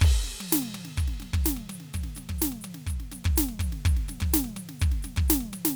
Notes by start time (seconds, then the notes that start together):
0.01 kick, hi-hat pedal, crash
0.24 snare
0.41 high tom
0.49 snare, hi-hat pedal
0.63 high tom
0.75 high tom
0.85 snare
0.97 kick, hi-hat pedal, high tom
1.08 snare
1.20 snare, high tom
1.34 kick, high tom
1.45 snare, hi-hat pedal
1.57 high tom
1.70 hi-hat pedal, high tom
1.80 snare
1.85 snare
1.94 kick, hi-hat pedal, high tom
2.04 snare
2.16 snare, hi-hat pedal, high tom
2.29 kick, high tom
2.39 snare, hi-hat pedal
2.52 high tom
2.62 hi-hat pedal, high tom
2.75 snare
2.87 kick, hi-hat pedal, high tom
3.00 snare
3.12 snare, hi-hat pedal, high tom
3.25 kick, high tom
3.36 snare, hi-hat pedal
3.49 high tom
3.60 kick, hi-hat pedal, high tom
3.73 snare
3.86 kick, hi-hat pedal, high tom
3.97 snare
4.09 snare, hi-hat pedal, high tom
4.21 kick, high tom
4.33 snare, hi-hat pedal
4.45 high tom
4.57 hi-hat pedal, high tom
4.69 snare
4.80 kick, hi-hat pedal, high tom
4.92 snare
5.03 snare, hi-hat pedal, high tom
5.17 kick, high tom
5.29 snare, hi-hat pedal
5.41 high tom
5.53 hi-hat pedal, high tom
5.66 snare